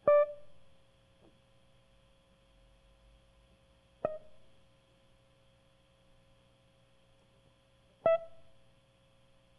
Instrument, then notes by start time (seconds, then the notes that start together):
electric guitar
0.08 D5
4.05 D#5
8.06 E5